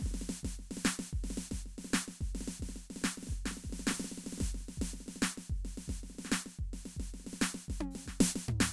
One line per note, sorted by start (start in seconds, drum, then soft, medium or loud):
0.00 kick soft
0.00 snare soft
0.07 kick soft
0.07 snare soft
0.12 snare soft
0.15 snare soft
0.27 snare medium
0.27 hi-hat pedal soft
0.44 kick soft
0.44 snare medium
0.60 snare soft
0.72 snare soft
0.78 snare soft
0.83 snare loud
0.83 hi-hat pedal medium
1.00 snare medium
1.14 kick soft
1.14 snare soft
1.20 kick soft
1.24 snare soft
1.31 snare soft
1.36 snare medium
1.36 hi-hat pedal soft
1.52 kick soft
1.52 snare soft
1.66 snare soft
1.79 snare soft
1.85 snare soft
1.91 snare soft
1.91 hi-hat pedal soft
1.94 snare loud
2.09 snare soft
2.21 kick soft
2.21 snare soft
2.28 kick soft
2.35 snare soft
2.41 snare soft
2.46 snare medium
2.46 hi-hat pedal soft
2.60 kick soft
2.60 snare soft
2.65 kick soft
2.65 snare soft
2.76 snare soft
2.91 snare soft
2.97 snare soft
3.02 snare soft
3.02 hi-hat pedal soft
3.05 snare medium
3.18 snare soft
3.23 snare soft
3.28 kick soft
3.28 snare soft
3.33 snare soft
3.46 snare medium
3.52 snare soft
3.52 hi-hat pedal soft
3.57 snare soft
3.64 kick soft
3.64 snare soft
3.70 snare soft
3.73 snare soft
3.80 snare soft
3.88 snare medium
3.92 snare medium
4.00 snare medium
4.05 snare soft
4.12 snare soft
4.12 hi-hat pedal soft
4.18 snare soft
4.24 snare soft
4.27 snare soft
4.33 snare soft
4.38 snare soft
4.41 kick soft
4.41 snare medium
4.48 kick soft
4.55 snare soft
4.61 snare soft
4.65 snare soft
4.65 hi-hat pedal soft
4.78 kick soft
4.78 snare medium
4.83 kick soft
4.94 snare soft
5.01 snare soft
5.07 snare soft
5.09 snare soft
5.16 snare soft
5.23 snare medium
5.23 hi-hat pedal soft
5.38 snare soft
5.50 kick soft
5.50 snare soft
5.57 kick soft
5.65 snare soft
5.75 snare soft
5.75 hi-hat pedal soft
5.89 kick soft
5.89 snare soft
5.94 kick soft
6.04 snare soft
6.10 snare soft
6.16 snare soft
6.19 snare soft
6.25 snare soft
6.30 snare soft
6.30 hi-hat pedal soft
6.32 snare medium
6.47 snare soft
6.60 kick soft
6.60 snare soft
6.65 kick soft
6.74 snare soft
6.83 snare soft
6.83 hi-hat pedal soft
6.97 kick soft
6.97 snare soft
7.14 snare soft
7.20 snare soft
7.25 snare soft
7.27 snare soft
7.34 snare soft
7.42 snare loud
7.42 hi-hat pedal soft
7.55 snare soft
7.69 kick soft
7.69 snare soft
7.81 high tom loud
7.91 hi-hat pedal medium
7.96 snare soft
8.07 kick soft
8.07 snare soft
8.21 snare loud
8.36 snare medium
8.48 floor tom medium
8.48 hi-hat pedal soft
8.61 snare loud